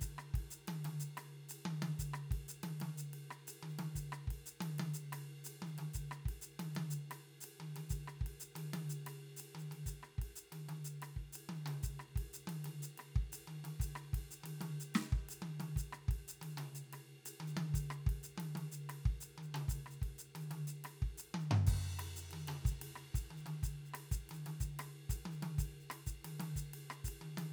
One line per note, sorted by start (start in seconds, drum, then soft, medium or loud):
0.01 kick soft
0.01 hi-hat pedal medium
0.01 ride soft
0.18 cross-stick medium
0.34 kick medium
0.34 ride medium
0.51 hi-hat pedal medium
0.68 high tom medium
0.68 ride medium
0.85 high tom medium
0.85 ride medium
1.00 hi-hat pedal medium
1.17 cross-stick medium
1.17 ride medium
1.49 hi-hat pedal medium
1.49 ride medium
1.65 high tom medium
1.82 high tom loud
1.82 ride soft
1.99 kick soft
1.99 hi-hat pedal medium
1.99 ride soft
2.14 cross-stick medium
2.31 kick medium
2.31 ride medium
2.48 hi-hat pedal medium
2.63 high tom medium
2.63 ride medium
2.80 high tom medium
2.80 ride medium
2.98 hi-hat pedal medium
3.13 ride medium
3.31 cross-stick medium
3.47 hi-hat pedal medium
3.47 ride medium
3.63 high tom medium
3.69 hi-hat pedal soft
3.79 high tom medium
3.79 ride medium
3.95 kick soft
3.95 hi-hat pedal medium
3.95 ride soft
4.12 cross-stick medium
4.28 kick soft
4.28 ride medium
4.46 hi-hat pedal medium
4.61 high tom medium
4.61 ride medium
4.79 high tom medium
4.79 ride medium
4.94 hi-hat pedal medium
5.12 cross-stick medium
5.12 ride medium
5.44 hi-hat pedal medium
5.44 ride medium
5.62 high tom medium
5.66 hi-hat pedal soft
5.78 high tom medium
5.78 ride soft
5.94 kick soft
5.94 hi-hat pedal medium
5.94 ride soft
6.11 cross-stick medium
6.26 kick soft
6.26 ride medium
6.41 hi-hat pedal medium
6.59 high tom medium
6.59 ride medium
6.75 high tom medium
6.75 ride soft
6.90 hi-hat pedal medium
7.11 cross-stick medium
7.11 ride medium
7.41 hi-hat pedal medium
7.41 ride medium
7.60 high tom medium
7.76 high tom medium
7.76 ride medium
7.90 kick soft
7.90 hi-hat pedal medium
7.90 ride soft
8.08 cross-stick medium
8.21 kick soft
8.26 ride medium
8.40 hi-hat pedal medium
8.56 high tom medium
8.56 ride medium
8.74 high tom medium
8.74 ride medium
8.90 hi-hat pedal medium
9.07 cross-stick medium
9.07 ride medium
9.37 hi-hat pedal medium
9.37 ride medium
9.55 hi-hat pedal soft
9.55 high tom medium
9.71 high tom soft
9.71 ride soft
9.86 kick soft
9.86 hi-hat pedal medium
9.86 ride soft
10.03 cross-stick soft
10.18 kick soft
10.18 ride medium
10.36 hi-hat pedal medium
10.52 high tom medium
10.52 ride medium
10.69 high tom medium
10.69 ride soft
10.85 hi-hat pedal medium
11.02 cross-stick medium
11.02 ride medium
11.16 kick soft
11.33 hi-hat pedal medium
11.33 ride medium
11.49 high tom medium
11.55 hi-hat pedal soft
11.66 high tom medium
11.66 ride medium
11.83 kick soft
11.83 hi-hat pedal medium
11.83 ride soft
11.99 cross-stick medium
12.16 kick soft
12.16 ride medium
12.33 hi-hat pedal medium
12.47 high tom medium
12.47 ride medium
12.65 high tom medium
12.65 ride medium
12.82 hi-hat pedal medium
12.98 cross-stick medium
12.98 ride medium
13.16 kick medium
13.32 hi-hat pedal medium
13.32 ride medium
13.48 high tom medium
13.64 high tom medium
13.64 ride medium
13.80 kick soft
13.80 hi-hat pedal medium
13.80 ride medium
13.95 cross-stick medium
14.13 kick soft
14.13 ride medium
14.31 hi-hat pedal medium
14.44 high tom medium
14.44 ride medium
14.61 high tom medium
14.61 ride medium
14.80 hi-hat pedal medium
14.95 snare medium
14.95 ride soft
15.03 hi-hat pedal soft
15.12 kick medium
15.29 hi-hat pedal medium
15.29 ride medium
15.42 high tom medium
15.60 high tom medium
15.60 ride medium
15.76 kick soft
15.76 hi-hat pedal medium
15.76 ride soft
15.93 cross-stick medium
16.08 kick medium
16.08 ride medium
16.28 hi-hat pedal medium
16.42 high tom medium
16.42 ride medium
16.50 hi-hat pedal soft
16.58 high tom medium
16.58 ride medium
16.75 hi-hat pedal medium
16.93 cross-stick soft
16.93 ride medium
17.26 hi-hat pedal medium
17.26 ride medium
17.40 high tom medium
17.47 hi-hat pedal soft
17.57 high tom loud
17.57 ride soft
17.74 kick soft
17.74 hi-hat pedal medium
17.74 ride medium
17.90 cross-stick medium
18.07 kick medium
18.07 ride medium
18.23 hi-hat pedal medium
18.38 high tom medium
18.38 ride medium
18.55 high tom medium
18.55 ride soft
18.72 hi-hat pedal medium
18.89 cross-stick medium
18.89 ride medium
19.06 kick medium
19.21 hi-hat pedal medium
19.21 ride soft
19.38 high tom medium
19.43 hi-hat pedal soft
19.54 high tom medium
19.54 ride soft
19.68 kick soft
19.68 hi-hat pedal medium
19.68 ride medium
19.86 cross-stick soft
19.91 hi-hat pedal soft
20.02 kick soft
20.02 ride soft
20.18 hi-hat pedal medium
20.35 high tom medium
20.35 ride soft
20.41 hi-hat pedal soft
20.51 high tom medium
20.51 ride medium
20.67 hi-hat pedal medium
20.84 cross-stick medium
20.84 ride medium
20.89 hi-hat pedal soft
21.02 kick medium
21.18 hi-hat pedal medium
21.18 ride medium
21.34 high tom loud
21.40 hi-hat pedal soft
21.51 floor tom loud
21.67 kick medium
21.67 hi-hat pedal medium
21.67 crash medium
21.99 cross-stick medium
21.99 ride medium
22.16 hi-hat pedal medium
22.31 high tom medium
22.31 ride soft
22.39 hi-hat pedal soft
22.48 high tom medium
22.48 ride medium
22.65 kick medium
22.65 hi-hat pedal medium
22.82 ride medium
22.96 cross-stick medium
23.15 kick medium
23.15 hi-hat pedal medium
23.15 ride medium
23.31 high tom medium
23.37 hi-hat pedal soft
23.46 high tom medium
23.46 ride soft
23.63 kick soft
23.63 hi-hat pedal medium
23.63 ride soft
23.86 hi-hat pedal soft
23.94 cross-stick medium
23.94 ride medium
24.12 kick medium
24.12 hi-hat pedal medium
24.29 hi-hat pedal soft
24.29 high tom medium
24.29 ride medium
24.46 high tom medium
24.46 ride medium
24.60 kick soft
24.60 hi-hat pedal medium
24.79 cross-stick medium
24.79 ride medium
25.10 kick soft
25.10 hi-hat pedal medium
25.10 ride medium
25.26 high tom medium
25.32 hi-hat pedal soft
25.43 high tom medium
25.43 ride soft
25.58 kick medium
25.58 hi-hat pedal medium
25.58 ride medium
25.80 hi-hat pedal soft
25.90 cross-stick medium
25.90 ride medium
26.07 kick soft
26.07 hi-hat pedal medium
26.25 high tom medium
26.25 ride medium
26.40 high tom medium
26.40 ride medium
26.56 kick soft
26.56 hi-hat pedal medium
26.74 ride medium
26.90 cross-stick medium
27.04 kick soft
27.04 hi-hat pedal medium
27.04 ride medium
27.21 high tom medium
27.37 high tom medium
27.37 ride medium